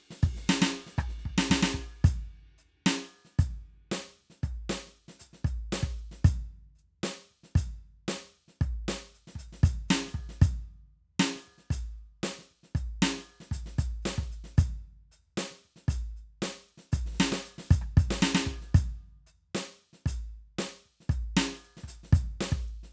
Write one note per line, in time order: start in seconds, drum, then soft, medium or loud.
0.11 snare medium
0.23 kick loud
0.23 ride loud
0.37 snare soft
0.43 snare soft
0.47 snare soft
0.47 hi-hat pedal medium
0.49 snare loud
0.62 snare loud
0.87 snare soft
0.98 kick medium
0.98 cross-stick medium
1.09 snare soft
1.18 snare soft
1.26 kick medium
1.38 snare loud
1.50 kick medium
1.50 snare loud
1.63 snare loud
1.74 kick medium
2.05 closed hi-hat loud
2.05 kick loud
2.58 hi-hat pedal soft
2.86 closed hi-hat loud
2.86 snare loud
3.25 snare soft
3.39 closed hi-hat loud
3.39 kick loud
3.92 closed hi-hat loud
3.92 snare loud
4.19 closed hi-hat soft
4.30 snare soft
4.43 closed hi-hat medium
4.43 kick medium
4.70 closed hi-hat medium
4.70 snare loud
4.87 snare soft
4.96 closed hi-hat soft
5.08 snare soft
5.19 closed hi-hat medium
5.19 kick soft
5.33 snare soft
5.45 closed hi-hat medium
5.45 kick medium
5.72 closed hi-hat loud
5.72 snare loud
5.83 kick medium
5.89 snare soft
5.96 closed hi-hat soft
6.12 snare soft
6.25 closed hi-hat loud
6.25 kick loud
6.75 closed hi-hat soft
6.75 hi-hat pedal soft
7.04 closed hi-hat loud
7.04 snare loud
7.29 kick soft
7.29 closed hi-hat soft
7.44 snare soft
7.56 closed hi-hat loud
7.56 kick loud
8.08 closed hi-hat loud
8.08 snare loud
8.35 closed hi-hat soft
8.48 snare soft
8.61 closed hi-hat medium
8.61 kick loud
8.88 closed hi-hat loud
8.88 snare loud
9.14 closed hi-hat soft
9.27 snare soft
9.36 closed hi-hat medium
9.36 kick soft
9.53 snare soft
9.64 closed hi-hat loud
9.64 kick loud
9.89 closed hi-hat loud
9.89 snare loud
9.89 hi-hat pedal soft
10.07 snare soft
10.15 kick medium
10.15 closed hi-hat soft
10.29 snare soft
10.42 closed hi-hat loud
10.42 kick loud
10.67 closed hi-hat soft
11.20 closed hi-hat loud
11.20 snare loud
11.36 snare soft
11.39 snare soft
11.45 kick soft
11.45 closed hi-hat soft
11.58 snare soft
11.71 closed hi-hat loud
11.71 kick medium
11.98 closed hi-hat soft
12.23 closed hi-hat loud
12.23 snare loud
12.39 snare soft
12.51 kick soft
12.51 closed hi-hat soft
12.64 snare soft
12.75 closed hi-hat medium
12.75 kick medium
13.02 closed hi-hat loud
13.02 snare loud
13.17 snare soft
13.29 closed hi-hat soft
13.41 snare soft
13.50 closed hi-hat loud
13.50 kick medium
13.50 snare soft
13.66 snare soft
13.78 closed hi-hat loud
13.78 kick medium
14.02 closed hi-hat loud
14.02 snare loud
14.02 hi-hat pedal soft
14.18 kick medium
14.18 snare soft
14.31 closed hi-hat soft
14.44 snare soft
14.58 closed hi-hat loud
14.58 kick loud
15.12 closed hi-hat medium
15.38 closed hi-hat loud
15.38 snare loud
15.51 snare soft
15.63 closed hi-hat soft
15.63 kick soft
15.76 snare soft
15.88 closed hi-hat loud
15.88 kick loud
16.16 closed hi-hat soft
16.42 closed hi-hat loud
16.42 snare loud
16.68 closed hi-hat soft
16.78 snare soft
16.92 closed hi-hat loud
16.92 kick loud
17.06 snare soft
17.11 snare soft
17.13 snare soft
17.13 hi-hat pedal soft
17.20 snare loud
17.32 snare loud
17.45 closed hi-hat medium
17.58 snare medium
17.71 closed hi-hat loud
17.71 kick loud
17.82 cross-stick soft
17.97 open hi-hat loud
17.97 kick loud
18.11 snare loud
18.19 snare loud
18.19 hi-hat pedal soft
18.35 snare loud
18.47 kick medium
18.47 snare soft
18.62 snare soft
18.75 closed hi-hat loud
18.75 kick loud
19.27 hi-hat pedal medium
19.55 closed hi-hat loud
19.55 snare loud
19.93 snare soft
20.06 closed hi-hat loud
20.06 kick medium
20.33 closed hi-hat soft
20.59 closed hi-hat medium
20.59 snare loud
20.85 kick soft
20.85 closed hi-hat soft
21.01 snare soft
21.10 closed hi-hat medium
21.10 kick loud
21.37 closed hi-hat loud
21.37 snare loud
21.53 snare soft
21.63 closed hi-hat soft
21.77 snare soft
21.84 kick soft
21.88 closed hi-hat loud
22.04 snare soft
22.13 closed hi-hat loud
22.13 kick loud
22.41 closed hi-hat medium
22.41 snare loud
22.52 kick medium
22.52 snare soft
22.67 closed hi-hat soft
22.83 snare soft